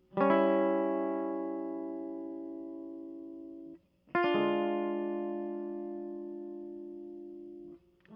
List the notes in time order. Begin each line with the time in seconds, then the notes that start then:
0.18 G3 C#4
0.30 E4
4.15 F4
4.24 D4
4.35 G#3
4.40 D3